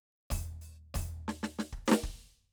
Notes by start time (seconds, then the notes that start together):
0.30 open hi-hat, kick, floor tom
0.61 hi-hat pedal
0.94 open hi-hat, kick, floor tom
1.28 snare
1.43 snare
1.59 snare
1.72 kick
1.86 snare, hi-hat pedal
1.91 snare
2.03 kick